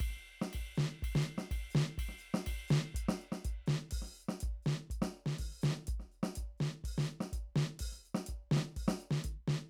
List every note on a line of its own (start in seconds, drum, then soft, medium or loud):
0.05 kick soft
0.05 ride medium
0.11 snare soft
0.16 snare soft
0.41 snare medium
0.52 kick soft
0.52 ride medium
0.59 kick soft
0.74 snare medium
0.74 hi-hat pedal soft
1.02 kick soft
1.02 ride medium
1.15 snare medium
1.21 hi-hat pedal medium
1.37 snare soft
1.51 kick soft
1.51 ride medium
1.70 hi-hat pedal medium
1.74 snare medium
1.97 kick soft
1.97 ride medium
2.08 snare soft
2.18 hi-hat pedal medium
2.18 ride soft
2.33 snare medium
2.46 kick soft
2.46 ride medium
2.52 kick soft
2.67 snare medium
2.67 hi-hat pedal medium
2.94 closed hi-hat medium
2.94 kick soft
3.08 snare medium
3.17 closed hi-hat soft
3.17 hi-hat pedal soft
3.31 snare soft
3.44 closed hi-hat medium
3.44 kick soft
3.66 snare medium
3.66 hi-hat pedal soft
3.90 open hi-hat medium
3.90 kick soft
4.01 snare soft
4.20 hi-hat pedal soft
4.28 snare medium
4.40 closed hi-hat medium
4.40 kick soft
4.48 kick soft
4.62 snare medium
4.62 hi-hat pedal soft
4.90 closed hi-hat medium
4.90 kick soft
5.01 snare medium
5.26 snare medium
5.38 open hi-hat medium
5.38 kick soft
5.44 kick soft
5.61 snare medium
5.61 hi-hat pedal medium
5.71 snare soft
5.86 closed hi-hat medium
5.86 kick soft
5.99 snare soft
6.11 open hi-hat soft
6.11 hi-hat pedal soft
6.22 snare medium
6.35 closed hi-hat medium
6.35 kick soft
6.42 kick soft
6.57 snare medium
6.57 hi-hat pedal soft
6.83 open hi-hat medium
6.83 kick soft
6.88 kick soft
6.97 snare medium
7.04 hi-hat pedal soft
7.10 closed hi-hat soft
7.20 snare soft
7.32 closed hi-hat medium
7.32 kick soft
7.55 snare medium
7.79 open hi-hat medium
7.79 kick soft
7.85 kick soft
7.92 snare soft
8.03 hi-hat pedal soft
8.03 open hi-hat soft
8.14 snare medium
8.26 closed hi-hat medium
8.26 kick soft
8.33 kick soft
8.51 snare medium
8.56 snare soft
8.76 open hi-hat medium
8.76 kick soft
8.87 snare medium
8.99 closed hi-hat soft
8.99 hi-hat pedal medium
9.10 snare medium
9.23 closed hi-hat medium
9.23 kick soft
9.47 snare medium